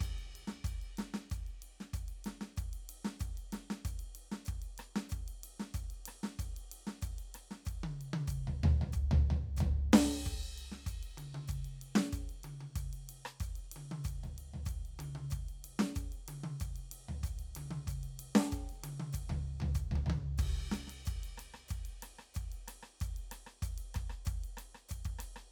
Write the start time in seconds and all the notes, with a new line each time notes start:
0.01 kick, hi-hat pedal, ride
0.19 ride
0.36 ride
0.48 snare
0.65 kick, hi-hat pedal, ride
0.82 ride
0.98 snare, ride
1.14 snare
1.31 kick, hi-hat pedal, ride
1.47 ride
1.63 ride
1.81 snare
1.94 kick, hi-hat pedal, ride
2.09 ride
2.25 snare, ride
2.41 snare
2.57 kick, hi-hat pedal, ride
2.74 ride
2.90 ride
3.05 snare
3.20 kick, hi-hat pedal, ride
3.38 ride
3.53 snare, ride
3.71 snare
3.85 kick, hi-hat pedal, ride
4.00 ride
4.16 ride
4.32 snare
4.46 kick, hi-hat pedal, ride
4.62 ride
4.78 cross-stick, ride
4.96 snare
5.10 kick, hi-hat pedal, ride
5.28 ride
5.44 ride
5.60 snare
5.75 kick, hi-hat pedal, ride
5.91 ride
6.06 cross-stick, ride
6.24 snare
6.39 kick, hi-hat pedal, ride
6.57 ride
6.72 ride
6.87 snare
7.02 kick, hi-hat pedal, ride
7.19 ride
7.35 cross-stick, ride
7.51 snare
7.66 kick, hi-hat pedal, ride
7.84 high tom
8.01 ride
8.14 high tom
8.28 kick, hi-hat pedal, ride
8.48 floor tom
8.64 floor tom
8.82 floor tom
8.93 kick, hi-hat pedal
9.12 floor tom
9.31 floor tom
9.57 kick, floor tom, hi-hat pedal
9.93 snare, crash
10.25 kick, hi-hat pedal, ride
10.44 ride
10.58 ride
10.72 snare
10.87 kick, hi-hat pedal, ride
11.03 ride
11.09 hi-hat pedal
11.18 high tom, ride
11.35 high tom
11.48 kick, hi-hat pedal, ride
11.65 ride
11.82 ride
11.96 snare
12.13 kick, hi-hat pedal, ride
12.30 ride
12.44 high tom, ride
12.61 high tom
12.76 kick, hi-hat pedal, ride
12.93 ride
13.10 ride
13.26 cross-stick
13.41 kick, hi-hat pedal, ride
13.56 ride
13.72 ride
13.77 high tom
13.92 high tom
14.05 kick, hi-hat pedal
14.09 ride
14.24 floor tom, ride
14.39 ride
14.54 floor tom
14.66 kick, hi-hat pedal, ride
14.86 ride
15.00 high tom, ride
15.16 high tom
15.31 kick, hi-hat pedal, ride
15.49 ride
15.65 ride
15.80 snare
15.96 kick, hi-hat pedal, ride
16.13 ride
16.28 high tom, ride
16.44 high tom
16.61 kick, hi-hat pedal, ride
16.76 ride
16.92 ride
17.09 floor tom
17.24 kick, hi-hat pedal, ride
17.39 ride
17.56 high tom, ride
17.71 high tom
17.88 kick, hi-hat pedal, ride
18.04 ride
18.20 ride
18.36 snare
18.52 kick, hi-hat pedal, ride
18.70 hi-hat pedal, ride
18.84 high tom, ride
19.00 high tom
19.13 kick, hi-hat pedal, ride
19.30 floor tom, high tom
19.61 floor tom, high tom
19.75 kick, hi-hat pedal
19.92 floor tom
19.96 high tom
20.07 floor tom, high tom
20.38 kick, hi-hat pedal, crash, ride
20.72 snare, ride
20.88 snare, ride
21.06 kick, hi-hat pedal, ride
21.24 ride
21.38 cross-stick, ride
21.54 cross-stick
21.69 kick, hi-hat pedal, ride
21.86 ride
22.03 cross-stick, ride
22.19 cross-stick
22.35 kick, hi-hat pedal, ride
22.52 ride
22.68 cross-stick, ride
22.83 cross-stick
23.01 kick, hi-hat pedal, ride
23.17 ride
23.32 cross-stick, ride
23.47 cross-stick
23.63 kick, hi-hat pedal, ride
23.78 ride
23.95 kick, cross-stick, ride
24.10 cross-stick
24.26 kick, hi-hat pedal, ride
24.44 ride
24.58 cross-stick, ride
24.75 cross-stick
24.89 kick, hi-hat pedal, ride
25.05 kick, ride
25.19 cross-stick, ride
25.36 cross-stick